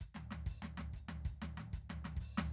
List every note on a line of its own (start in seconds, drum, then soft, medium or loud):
0.00 kick soft
0.00 hi-hat pedal medium
0.14 snare soft
0.14 floor tom soft
0.31 snare soft
0.31 floor tom medium
0.46 kick soft
0.46 hi-hat pedal medium
0.62 snare soft
0.62 floor tom medium
0.77 snare soft
0.77 floor tom medium
0.93 kick soft
0.93 hi-hat pedal medium
1.08 snare soft
1.08 floor tom medium
1.25 kick soft
1.25 hi-hat pedal medium
1.42 snare soft
1.42 floor tom medium
1.57 snare soft
1.57 floor tom soft
1.73 kick soft
1.73 hi-hat pedal medium
1.90 snare soft
1.90 floor tom medium
2.04 snare soft
2.04 floor tom soft
2.17 kick soft
2.21 hi-hat pedal medium
2.37 snare medium
2.37 floor tom medium